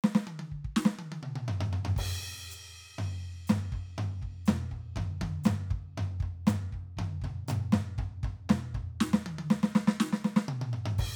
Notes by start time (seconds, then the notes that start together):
0.04 snare
0.15 snare
0.26 hi-hat pedal, high tom
0.40 high tom
0.52 kick
0.65 kick
0.77 snare
0.86 snare
0.99 high tom
1.12 high tom
1.23 mid tom
1.36 mid tom
1.49 floor tom
1.61 floor tom
1.73 floor tom
1.85 floor tom
1.97 kick, crash
2.51 hi-hat pedal
2.99 floor tom
3.48 snare, floor tom, hi-hat pedal
3.73 kick, floor tom
3.99 floor tom
4.22 kick, floor tom
4.46 snare, hi-hat pedal, floor tom
4.72 kick, floor tom
4.96 kick, floor tom, high tom
5.22 kick, floor tom, high tom
5.44 snare, floor tom, hi-hat pedal
5.71 kick, floor tom
5.98 floor tom
6.21 kick, floor tom
6.47 snare, floor tom, hi-hat pedal
6.73 kick, floor tom
6.98 kick, floor tom, high tom
7.22 kick, floor tom, mid tom
7.48 floor tom, hi-hat pedal, mid tom
7.73 snare, floor tom
7.99 kick, floor tom
8.24 kick, floor tom
8.50 snare, floor tom
8.75 kick, floor tom
9.01 snare
9.14 snare
9.27 high tom
9.39 high tom
9.51 snare
9.64 snare
9.69 hi-hat pedal
9.76 snare
9.88 snare
10.01 snare
10.13 snare
10.25 snare
10.37 snare
10.49 mid tom
10.62 mid tom
10.74 floor tom
10.86 floor tom
10.99 kick, crash